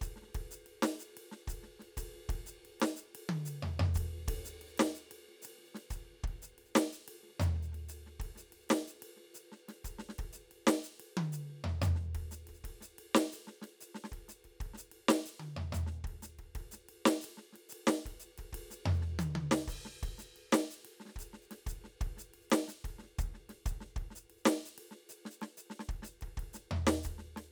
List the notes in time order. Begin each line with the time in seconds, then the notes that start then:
0.01 kick, hi-hat pedal, ride
0.16 snare
0.22 snare
0.28 snare
0.34 kick, ride
0.51 hi-hat pedal
0.66 ride
0.82 snare, ride
0.99 hi-hat pedal
1.17 ride
1.31 snare
1.47 kick, hi-hat pedal, ride
1.63 snare
1.79 snare, ride
1.97 kick, hi-hat pedal, ride
2.14 snare
2.29 kick, ride
2.45 snare, hi-hat pedal
2.65 ride
2.80 snare, ride
2.96 hi-hat pedal
3.15 ride
3.29 high tom
3.45 hi-hat pedal, ride
3.62 floor tom
3.79 floor tom
3.94 kick, hi-hat pedal, ride
4.28 kick, ride
4.44 snare, hi-hat pedal
4.61 ride
4.68 hi-hat pedal
4.78 snare, ride
4.95 hi-hat pedal
5.11 ride
5.28 snare
5.42 hi-hat pedal, ride
5.57 snare
5.65 hi-hat pedal
5.74 snare, ride
5.90 kick, hi-hat pedal, ride
6.12 snare
6.23 kick, ride
6.42 snare, hi-hat pedal
6.58 ride
6.65 hi-hat pedal
6.75 snare, ride
6.92 hi-hat pedal
7.08 ride
7.23 snare
7.29 snare
7.40 floor tom, hi-hat pedal
7.54 snare
7.62 hi-hat pedal
7.72 snare, ride
7.88 hi-hat pedal, ride
8.06 snare
8.19 kick, ride
8.35 snare, hi-hat pedal
8.40 snare
8.52 ride
8.60 hi-hat pedal
8.69 snare, ride
8.87 hi-hat pedal
9.02 ride
9.16 snare
9.34 hi-hat pedal, ride
9.52 snare, hi-hat pedal
9.68 snare, ride
9.84 kick, hi-hat pedal, ride
9.98 snare
10.09 snare
10.18 kick, ride
10.33 snare, hi-hat pedal
10.51 ride
10.67 snare
10.83 hi-hat pedal
11.00 ride
11.17 high tom
11.32 hi-hat pedal, ride
11.49 snare
11.64 floor tom
11.82 floor tom, hi-hat pedal
11.95 snare
12.14 kick, ride
12.31 snare, hi-hat pedal
12.47 kick, ride
12.54 hi-hat pedal
12.64 kick, ride
12.80 snare, hi-hat pedal
12.98 ride
13.15 snare
13.32 hi-hat pedal, ride
13.47 snare
13.61 snare, ride
13.80 hi-hat pedal, ride
13.94 snare
14.04 snare
14.12 kick, ride
14.28 snare, hi-hat pedal
14.44 kick, ride
14.60 kick, ride
14.73 snare, hi-hat pedal
14.91 ride
15.08 snare
15.25 hi-hat pedal, ride
15.39 high tom
15.56 floor tom
15.72 floor tom, hi-hat pedal
15.86 snare
16.04 kick, ride
16.22 snare, hi-hat pedal
16.38 kick, ride
16.55 kick, ride
16.71 snare, hi-hat pedal
16.89 ride
17.05 snare
17.21 hi-hat pedal, ride
17.37 snare
17.52 snare, ride
17.69 hi-hat pedal, ride
17.87 snare
18.05 kick, ride
18.19 snare, hi-hat pedal
18.38 kick, ride
18.52 kick, ride
18.70 snare, hi-hat pedal
18.78 snare
18.85 floor tom
18.94 hi-hat pedal
19.01 snare
19.19 hi-hat pedal, high tom
19.35 high tom
19.51 snare
19.67 kick, hi-hat pedal, crash
19.85 snare
20.02 kick, ride
20.18 snare, hi-hat pedal
20.36 ride
20.52 snare, ride
20.70 hi-hat pedal
20.85 ride
21.00 snare
21.05 snare
21.08 snare
21.16 kick, hi-hat pedal, ride
21.33 snare
21.42 hi-hat pedal
21.51 snare, ride
21.66 kick, hi-hat pedal, ride
21.84 snare
22.01 kick, ride
22.17 snare, hi-hat pedal
22.34 ride
22.42 hi-hat pedal
22.50 snare, ride
22.68 snare, hi-hat pedal
22.84 kick, ride
22.98 snare
23.02 snare
23.18 kick, hi-hat pedal, ride
23.34 snare
23.49 snare, ride
23.66 kick, hi-hat pedal, ride
23.80 snare
23.96 kick, ride
24.10 snare
24.15 hi-hat pedal
24.30 ride
24.38 hi-hat pedal
24.45 snare, ride
24.65 hi-hat pedal
24.78 ride
24.87 snare, hi-hat pedal
25.09 hi-hat pedal, ride
25.25 snare
25.31 hi-hat pedal
25.41 snare, ride
25.57 hi-hat pedal, ride
25.70 snare
25.79 snare
25.89 kick, ride
26.02 snare, hi-hat pedal
26.21 kick, ride
26.37 kick, ride
26.53 snare, hi-hat pedal
26.71 floor tom
26.87 snare
27.03 kick, hi-hat pedal, ride
27.18 snare
27.36 snare, ride